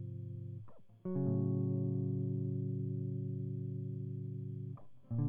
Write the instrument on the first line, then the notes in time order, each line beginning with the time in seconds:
electric guitar
1.06 F#3
1.17 C#3
1.28 A2
5.12 A#2
5.20 D3